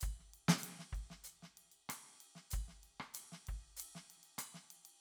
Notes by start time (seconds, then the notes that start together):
0.01 kick, hi-hat pedal, ride bell
0.20 snare
0.34 ride
0.49 snare
0.59 hi-hat pedal
0.64 ride
0.79 snare
0.93 kick, ride
1.11 snare
1.24 floor tom, hi-hat pedal, ride
1.43 snare
1.58 ride
1.72 ride bell
1.90 cross-stick, hi-hat pedal, ride
2.21 ride
2.36 snare
2.51 kick, hi-hat pedal, ride bell
2.68 snare
2.84 ride
3.00 cross-stick
3.14 hi-hat pedal, ride
3.32 snare
3.48 kick, ride
3.77 hi-hat pedal, ride
3.96 snare
4.11 ride
4.24 ride
4.39 cross-stick, hi-hat pedal, ride bell
4.55 snare
4.71 ride
4.86 ride